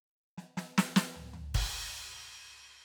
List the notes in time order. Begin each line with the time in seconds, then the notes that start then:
0.38 snare
0.57 snare
0.78 snare
0.96 snare
1.16 floor tom
1.34 floor tom
1.54 kick, crash